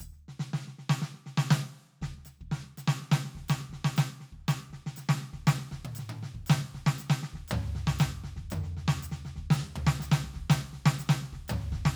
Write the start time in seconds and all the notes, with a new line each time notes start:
0.00 kick, percussion
0.12 snare
0.28 snare
0.39 snare
0.53 snare
0.67 snare
0.78 snare
0.89 snare
0.98 snare
1.02 snare
1.14 snare
1.26 snare
1.37 snare
1.44 snare
1.51 snare
1.56 cross-stick
1.90 snare
2.01 kick, snare
2.18 snare
2.25 snare, percussion
2.39 kick, snare
2.51 snare
2.63 snare
2.77 snare, percussion
2.88 snare
3.01 snare
3.11 snare
3.16 cross-stick
3.25 snare
3.35 kick, snare
3.48 snare, percussion
3.60 snare
3.69 kick, snare
3.84 snare
3.96 snare, percussion
4.20 snare
4.32 kick, snare
4.48 snare, percussion
4.60 snare
4.65 snare
4.70 kick, snare
4.86 snare
4.96 snare, percussion
5.09 snare
5.14 snare
5.21 snare
5.33 kick, snare
5.47 snare, percussion
5.58 snare
5.71 kick, snare
5.85 high tom
5.95 snare, percussion
6.09 high tom
6.23 snare
6.34 kick
6.46 snare, percussion
6.59 snare
6.74 kick, snare
6.86 snare
6.98 snare, percussion
7.10 snare
7.23 snare
7.33 kick, snare
7.48 percussion, floor tom
7.63 snare
7.75 snare
7.87 snare
7.99 snare, percussion
8.15 snare
8.24 snare
8.36 kick, snare
8.50 mid tom, percussion
8.63 snare
8.77 snare
8.88 snare
8.99 snare, percussion
9.11 snare
9.25 snare, percussion
9.36 kick, snare
9.50 snare, percussion
9.62 snare
9.76 floor tom
9.87 snare
10.00 snare, percussion
10.11 snare
10.16 snare
10.24 snare
10.36 kick
10.50 snare, percussion
10.60 snare
10.73 snare
10.86 snare
10.99 snare, percussion
11.09 snare
11.13 cross-stick
11.22 snare
11.32 kick, snare
11.48 percussion, floor tom
11.60 snare
11.72 kick, snare
11.78 kick
11.85 snare